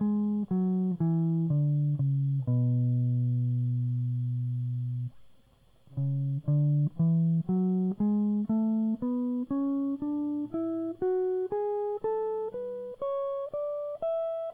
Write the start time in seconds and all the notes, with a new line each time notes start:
0.02 G#3
0.52 F#3
1.01 E3
1.52 D3
2.01 C#3
2.49 B2
6.06 C#3
6.49 D3
7.01 E3
7.50 F#3
8.01 G#3
8.50 A3
9.03 B3
9.51 C#4
10.02 D4
10.54 E4
11.02 F#4
11.52 G#4
12.04 A4
12.53 B4
13.02 C#5
13.54 D5
14.03 E5